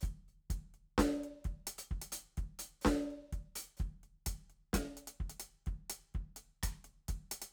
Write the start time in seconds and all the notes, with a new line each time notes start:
0.01 kick, hi-hat pedal
0.05 closed hi-hat
0.28 closed hi-hat
0.50 kick, closed hi-hat
0.74 closed hi-hat
0.98 closed hi-hat, kick, snare
1.24 closed hi-hat
1.45 kick, closed hi-hat
1.67 closed hi-hat
1.79 closed hi-hat
1.91 kick
2.02 closed hi-hat
2.12 closed hi-hat
2.38 kick, closed hi-hat
2.59 closed hi-hat
2.82 snare, hi-hat pedal
2.86 kick, closed hi-hat
3.11 closed hi-hat
3.33 kick, closed hi-hat
3.56 open hi-hat
3.77 kick, closed hi-hat, hi-hat pedal
4.04 closed hi-hat
4.27 kick, closed hi-hat
4.50 closed hi-hat
4.73 kick, snare, closed hi-hat
4.97 closed hi-hat
5.08 closed hi-hat
5.20 kick
5.30 closed hi-hat
5.40 closed hi-hat
5.66 kick, closed hi-hat
5.90 closed hi-hat
6.14 kick, closed hi-hat
6.37 closed hi-hat
6.63 kick, cross-stick, closed hi-hat
6.85 closed hi-hat
7.09 kick, closed hi-hat
7.32 closed hi-hat
7.42 closed hi-hat